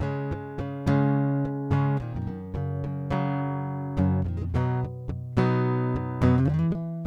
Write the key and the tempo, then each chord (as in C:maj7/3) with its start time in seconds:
G# minor, 107 BPM
0.03 C#:(1,5)
2.28 F#:(1,5)
4.52 B:maj(#11)/b5
6.76 E:maj